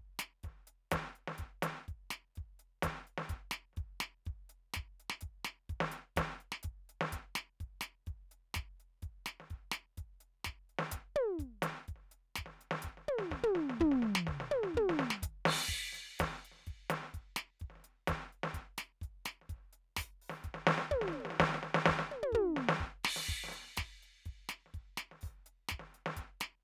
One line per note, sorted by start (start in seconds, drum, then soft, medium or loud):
0.20 closed hi-hat loud
0.20 snare medium
0.44 kick soft
0.44 snare soft
0.44 closed hi-hat soft
0.50 snare soft
0.67 closed hi-hat medium
0.92 closed hi-hat loud
0.92 kick soft
0.92 snare medium
1.03 snare soft
1.16 closed hi-hat soft
1.28 snare medium
1.38 kick soft
1.38 closed hi-hat medium
1.63 closed hi-hat loud
1.63 snare medium
1.88 kick soft
1.88 closed hi-hat soft
2.11 closed hi-hat loud
2.11 snare medium
2.36 kick soft
2.36 closed hi-hat soft
2.60 closed hi-hat soft
2.83 closed hi-hat loud
2.83 kick soft
2.83 snare medium
3.07 open hi-hat soft
3.18 snare medium
3.30 closed hi-hat medium
3.30 kick soft
3.52 closed hi-hat medium
3.52 snare medium
3.74 snare soft
3.74 closed hi-hat soft
3.78 kick soft
4.01 closed hi-hat medium
4.01 snare medium
4.26 kick soft
4.26 closed hi-hat soft
4.50 closed hi-hat soft
4.74 closed hi-hat loud
4.74 kick soft
4.74 snare medium
5.00 closed hi-hat soft
5.10 snare medium
5.21 closed hi-hat medium
5.21 kick soft
5.45 closed hi-hat medium
5.45 snare medium
5.70 kick soft
5.70 closed hi-hat soft
5.81 snare medium
5.92 open hi-hat medium
6.17 closed hi-hat medium
6.17 kick soft
6.17 snare medium
6.41 closed hi-hat soft
6.52 snare medium
6.63 closed hi-hat medium
6.63 kick soft
6.90 open hi-hat soft
7.01 snare medium
7.13 closed hi-hat medium
7.13 kick soft
7.36 closed hi-hat loud
7.36 snare loud
7.61 kick soft
7.61 closed hi-hat soft
7.81 closed hi-hat loud
7.81 snare medium
8.07 kick soft
8.07 closed hi-hat soft
8.32 closed hi-hat soft
8.55 closed hi-hat loud
8.55 kick soft
8.55 snare medium
8.80 closed hi-hat soft
9.03 kick soft
9.03 closed hi-hat soft
9.26 closed hi-hat medium
9.26 snare medium
9.40 snare soft
9.50 kick soft
9.50 closed hi-hat soft
9.72 closed hi-hat medium
9.72 snare medium
9.98 closed hi-hat soft
9.98 kick soft
10.21 closed hi-hat soft
10.45 closed hi-hat medium
10.45 kick soft
10.45 snare medium
10.70 open hi-hat soft
10.79 snare medium
10.92 closed hi-hat loud
10.92 kick soft
11.16 high tom loud
11.39 kick soft
11.39 closed hi-hat medium
11.63 closed hi-hat medium
11.63 snare medium
11.88 closed hi-hat soft
11.88 kick soft
11.96 snare soft
12.12 closed hi-hat soft
12.36 closed hi-hat medium
12.36 kick soft
12.36 snare medium
12.46 snare soft
12.61 closed hi-hat soft
12.72 snare medium
12.83 open hi-hat medium
12.83 kick soft
12.98 snare soft
13.08 high tom loud
13.19 snare soft
13.31 kick soft
13.31 snare soft
13.44 mid tom loud
13.56 snare soft
13.70 snare soft
13.80 kick soft
13.80 floor tom loud
13.92 snare soft
14.03 snare soft
14.16 snare loud
14.27 kick soft
14.27 snare soft
14.27 hi-hat pedal soft
14.41 snare soft
14.51 high tom loud
14.64 snare soft
14.75 kick soft
14.75 mid tom loud
14.90 snare medium
15.00 snare medium
15.11 snare loud
15.23 closed hi-hat loud
15.23 kick soft
15.46 snare loud
15.46 crash loud
15.69 kick soft
15.69 closed hi-hat soft
15.74 snare soft
15.93 closed hi-hat medium
15.93 snare soft
15.97 snare soft
16.20 closed hi-hat loud
16.20 kick soft
16.20 snare medium
16.25 kick soft
16.45 closed hi-hat soft
16.52 snare soft
16.57 snare soft
16.60 snare soft
16.67 kick soft
16.67 closed hi-hat soft
16.90 closed hi-hat medium
16.90 snare medium
17.04 snare soft
17.14 closed hi-hat soft
17.14 kick soft
17.37 closed hi-hat loud
17.37 snare medium
17.60 closed hi-hat soft
17.60 kick soft
17.70 snare soft
17.76 snare soft
17.85 closed hi-hat medium
18.08 closed hi-hat medium
18.08 kick soft
18.08 snare medium
18.33 open hi-hat soft
18.44 snare medium
18.54 closed hi-hat medium
18.54 kick soft
18.78 open hi-hat loud
18.78 snare medium
19.02 closed hi-hat soft
19.02 kick soft
19.26 open hi-hat medium
19.26 snare medium
19.42 snare soft
19.50 closed hi-hat soft
19.50 kick soft
19.50 snare soft
19.54 snare soft
19.57 snare soft
19.59 snare soft
19.73 closed hi-hat soft
19.97 open hi-hat medium
19.97 kick soft
19.97 snare medium
20.22 open hi-hat soft
20.30 snare soft
20.44 kick soft
20.44 closed hi-hat soft
20.55 snare soft
20.67 snare loud
20.78 snare medium
20.91 kick soft
20.91 high tom loud
21.02 snare medium
21.08 snare soft
21.13 high tom medium
21.20 high tom soft
21.25 snare soft
21.31 snare soft
21.36 kick soft
21.36 snare soft
21.40 snare loud
21.50 snare soft
21.55 snare soft
21.63 snare soft
21.75 snare loud
21.86 kick soft
21.86 snare loud
21.86 hi-hat pedal soft
21.99 snare medium
22.12 high tom medium
22.23 high tom loud
22.33 kick soft
22.33 mid tom loud
22.57 snare medium
22.69 snare loud
22.78 kick soft
22.78 hi-hat pedal soft
23.04 snare loud
23.04 crash loud
23.17 snare soft
23.28 closed hi-hat soft
23.28 kick soft
23.44 snare soft
23.49 snare soft
23.52 snare soft
23.52 closed hi-hat soft
23.77 closed hi-hat loud
23.77 kick soft
23.77 snare medium
24.03 open hi-hat soft
24.26 kick soft
24.26 closed hi-hat soft
24.49 closed hi-hat medium
24.49 snare medium
24.66 snare soft
24.74 kick soft
24.74 closed hi-hat soft
24.98 open hi-hat medium
24.98 snare medium
25.12 snare soft
25.21 open hi-hat soft
25.21 kick soft
25.21 snare soft
25.29 snare soft
25.46 closed hi-hat medium
25.69 closed hi-hat medium
25.69 kick soft
25.69 snare medium
25.80 snare soft
25.95 open hi-hat soft
26.06 snare medium
26.17 closed hi-hat medium
26.17 kick soft
26.41 open hi-hat medium
26.41 snare medium